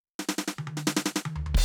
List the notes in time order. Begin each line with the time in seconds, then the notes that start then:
0.19 snare
0.29 snare
0.38 snare
0.48 snare
0.56 kick, high tom
0.67 high tom
0.77 snare
0.87 snare
0.97 snare
1.06 snare
1.16 snare
1.25 high tom
1.36 floor tom
1.46 floor tom
1.55 kick, crash